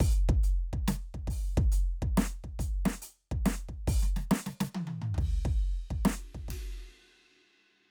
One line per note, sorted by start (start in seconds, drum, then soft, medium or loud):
0.01 open hi-hat loud
0.01 kick loud
0.30 kick loud
0.44 closed hi-hat medium
0.74 kick medium
0.89 closed hi-hat loud
0.89 snare loud
1.15 kick medium
1.28 open hi-hat medium
1.28 kick medium
1.58 kick loud
1.73 closed hi-hat loud
2.03 kick medium
2.18 closed hi-hat loud
2.18 snare loud
2.45 kick soft
2.60 closed hi-hat loud
2.60 kick medium
2.86 snare loud
3.03 closed hi-hat loud
3.32 kick medium
3.46 open hi-hat loud
3.46 snare loud
3.69 kick soft
3.88 open hi-hat loud
3.88 kick loud
4.03 snare soft
4.03 hi-hat pedal soft
4.17 snare medium
4.32 snare loud
4.32 hi-hat pedal medium
4.47 snare medium
4.61 snare loud
4.76 high tom loud
4.88 high tom medium
5.01 kick soft
5.01 mid tom loud
5.15 kick medium
5.15 floor tom loud
5.22 crash medium
5.46 kick loud
5.91 kick medium
6.06 snare loud
6.06 ride medium
6.35 kick soft
6.49 kick medium
6.49 ride loud
7.37 ride soft